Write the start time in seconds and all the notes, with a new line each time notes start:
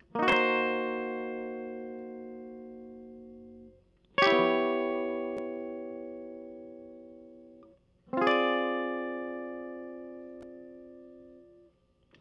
0.16 A#3 D#4
0.23 F#4
0.29 C5
4.19 G4 C#5
4.27 E4
4.33 B3
8.14 C4
8.18 F4
8.22 G#4
8.28 D5